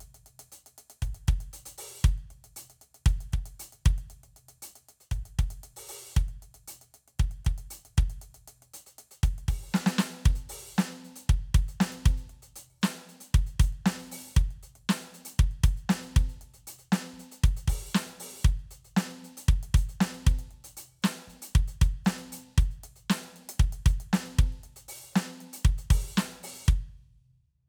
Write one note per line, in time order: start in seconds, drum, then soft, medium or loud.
0.01 closed hi-hat medium
0.15 closed hi-hat medium
0.26 closed hi-hat medium
0.40 closed hi-hat medium
0.52 closed hi-hat medium
0.67 closed hi-hat medium
0.78 closed hi-hat medium
0.90 closed hi-hat medium
1.03 kick medium
1.03 closed hi-hat medium
1.15 closed hi-hat medium
1.28 kick loud
1.28 closed hi-hat medium
1.41 closed hi-hat medium
1.54 closed hi-hat loud
1.66 closed hi-hat loud
1.78 open hi-hat loud
1.96 open hi-hat soft
2.03 kick loud
2.03 closed hi-hat soft
2.03 hi-hat pedal soft
2.18 closed hi-hat soft
2.31 closed hi-hat soft
2.45 closed hi-hat medium
2.57 closed hi-hat loud
2.70 closed hi-hat medium
2.82 closed hi-hat medium
2.95 closed hi-hat medium
3.06 kick loud
3.06 closed hi-hat medium
3.21 closed hi-hat medium
3.33 kick medium
3.33 closed hi-hat soft
3.46 closed hi-hat medium
3.60 closed hi-hat loud
3.73 closed hi-hat medium
3.86 kick loud
3.86 closed hi-hat medium
3.98 closed hi-hat soft
4.10 closed hi-hat medium
4.24 closed hi-hat soft
4.37 closed hi-hat medium
4.49 closed hi-hat medium
4.63 closed hi-hat loud
4.76 closed hi-hat medium
4.89 closed hi-hat medium
5.01 closed hi-hat soft
5.12 kick medium
5.12 closed hi-hat medium
5.26 closed hi-hat medium
5.39 kick loud
5.39 closed hi-hat medium
5.51 closed hi-hat medium
5.64 closed hi-hat medium
5.77 open hi-hat loud
5.89 open hi-hat loud
6.06 open hi-hat soft
6.15 kick loud
6.15 closed hi-hat soft
6.15 hi-hat pedal soft
6.29 closed hi-hat soft
6.43 closed hi-hat medium
6.55 closed hi-hat medium
6.68 closed hi-hat loud
6.82 closed hi-hat medium
6.95 closed hi-hat medium
7.08 closed hi-hat soft
7.19 kick loud
7.19 closed hi-hat soft
7.32 closed hi-hat soft
7.45 kick medium
7.45 closed hi-hat soft
7.58 closed hi-hat medium
7.71 closed hi-hat loud
7.86 closed hi-hat medium
7.98 kick loud
7.98 closed hi-hat soft
8.10 closed hi-hat medium
8.22 closed hi-hat medium
8.35 closed hi-hat medium
8.48 closed hi-hat medium
8.63 closed hi-hat soft
8.74 closed hi-hat loud
8.87 closed hi-hat medium
8.99 closed hi-hat medium
9.11 closed hi-hat medium
9.24 kick loud
9.24 closed hi-hat medium
9.39 closed hi-hat soft
9.49 open hi-hat medium
9.49 kick medium
9.63 open hi-hat medium
9.72 snare loud
9.72 hi-hat pedal soft
9.87 snare loud
9.99 snare loud
10.12 closed hi-hat soft
10.26 kick loud
10.26 closed hi-hat soft
10.36 closed hi-hat medium
10.50 open hi-hat loud
10.64 open hi-hat soft
10.76 snare loud
10.76 hi-hat pedal soft
10.93 closed hi-hat soft
11.05 closed hi-hat medium
11.16 closed hi-hat loud
11.30 kick loud
11.30 closed hi-hat soft
11.45 closed hi-hat soft
11.55 kick loud
11.55 closed hi-hat medium
11.69 closed hi-hat medium
11.81 snare loud
11.93 closed hi-hat medium
12.06 closed hi-hat medium
12.06 kick loud
12.18 closed hi-hat soft
12.30 closed hi-hat soft
12.43 closed hi-hat medium
12.56 open hi-hat loud
12.71 open hi-hat soft
12.82 snare loud
12.82 hi-hat pedal soft
12.96 closed hi-hat soft
13.09 closed hi-hat medium
13.21 closed hi-hat medium
13.35 kick loud
13.35 closed hi-hat medium
13.47 closed hi-hat soft
13.60 closed hi-hat loud
13.60 kick loud
13.73 closed hi-hat soft
13.86 snare loud
13.99 open hi-hat medium
14.12 open hi-hat loud
14.27 open hi-hat soft
14.34 kick loud
14.34 hi-hat pedal soft
14.39 closed hi-hat soft
14.51 closed hi-hat soft
14.63 closed hi-hat medium
14.76 closed hi-hat soft
14.90 snare loud
15.01 closed hi-hat soft
15.15 closed hi-hat medium
15.26 closed hi-hat loud
15.39 kick loud
15.39 closed hi-hat soft
15.51 closed hi-hat soft
15.64 kick loud
15.64 closed hi-hat medium
15.77 closed hi-hat soft
15.90 snare loud
16.03 closed hi-hat soft
16.17 closed hi-hat medium
16.17 kick loud
16.29 closed hi-hat soft
16.42 closed hi-hat medium
16.54 closed hi-hat medium
16.68 closed hi-hat loud
16.79 closed hi-hat medium
16.93 snare loud
17.07 closed hi-hat soft
17.13 kick soft
17.20 closed hi-hat medium
17.32 closed hi-hat medium
17.44 kick loud
17.44 closed hi-hat medium
17.57 closed hi-hat medium
17.68 open hi-hat loud
17.68 kick medium
17.84 open hi-hat soft
17.93 snare loud
17.93 hi-hat pedal soft
18.08 closed hi-hat soft
18.20 open hi-hat loud
18.34 open hi-hat soft
18.43 kick loud
18.43 hi-hat pedal soft
18.48 closed hi-hat soft
18.60 closed hi-hat soft
18.71 closed hi-hat medium
18.85 closed hi-hat soft
18.97 snare loud
19.11 closed hi-hat soft
19.25 closed hi-hat medium
19.38 closed hi-hat loud
19.49 kick loud
19.49 closed hi-hat soft
19.63 closed hi-hat medium
19.75 closed hi-hat medium
19.75 kick loud
19.89 closed hi-hat medium
20.01 snare loud
20.15 closed hi-hat soft
20.27 closed hi-hat medium
20.27 kick loud
20.39 closed hi-hat medium
20.51 closed hi-hat soft
20.65 closed hi-hat loud
20.77 open hi-hat loud
20.89 open hi-hat soft
21.03 snare loud
21.03 hi-hat pedal soft
21.16 closed hi-hat soft
21.28 closed hi-hat medium
21.28 kick soft
21.42 closed hi-hat loud
21.56 kick loud
21.56 closed hi-hat soft
21.68 closed hi-hat medium
21.82 open hi-hat medium
21.82 kick loud
22.05 snare loud
22.05 hi-hat pedal soft
22.18 closed hi-hat medium
22.33 closed hi-hat loud
22.58 closed hi-hat medium
22.58 kick loud
22.71 closed hi-hat soft
22.84 closed hi-hat medium
22.96 closed hi-hat soft
23.10 snare loud
23.24 closed hi-hat soft
23.36 closed hi-hat medium
23.49 closed hi-hat loud
23.60 kick loud
23.60 closed hi-hat soft
23.73 closed hi-hat medium
23.86 closed hi-hat medium
23.86 kick loud
24.01 closed hi-hat medium
24.13 snare loud
24.26 closed hi-hat soft
24.39 kick loud
24.39 closed hi-hat soft
24.53 closed hi-hat soft
24.64 closed hi-hat medium
24.76 closed hi-hat medium
24.89 open hi-hat loud
25.03 open hi-hat soft
25.13 snare loud
25.13 hi-hat pedal soft
25.29 closed hi-hat soft
25.41 closed hi-hat medium
25.54 closed hi-hat loud
25.65 kick loud
25.65 closed hi-hat soft
25.79 closed hi-hat medium
25.91 open hi-hat loud
25.91 kick loud
26.06 open hi-hat soft
26.16 snare loud
26.16 hi-hat pedal soft
26.31 closed hi-hat soft
26.44 open hi-hat loud
26.66 kick loud
26.66 hi-hat pedal soft